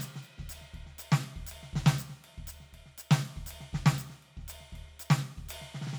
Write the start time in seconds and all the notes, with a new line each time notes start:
0.01 percussion
0.16 snare
0.23 ride, percussion
0.38 kick, snare
0.42 snare
0.49 ride bell, percussion
0.61 snare
0.66 snare
0.74 kick, ride
0.86 snare
0.98 ride, percussion
1.12 snare
1.17 cross-stick
1.23 ride
1.36 kick, snare
1.47 percussion
1.51 ride
1.63 snare
1.73 kick, snare
1.86 snare
1.98 ride bell, percussion
2.09 snare
2.17 snare
2.24 ride
2.34 kick, snare
2.39 snare
2.47 ride bell, percussion
2.60 snare
2.66 snare
2.73 kick, ride
2.86 snare
2.98 ride, percussion
3.11 snare
3.16 cross-stick
3.20 percussion
3.25 ride
3.36 kick, snare
3.46 percussion
3.51 ride
3.61 snare
3.73 kick, snare
3.86 snare
3.92 snare
3.98 ride bell, percussion
4.10 snare
4.22 ride
4.37 kick, snare
4.48 ride, percussion
4.60 snare
4.72 kick, ride
4.82 snare
4.99 ride, percussion
5.10 snare
5.17 snare
5.37 kick, snare
5.49 ride, percussion
5.61 snare
5.74 snare
5.81 snare
5.87 snare
5.93 snare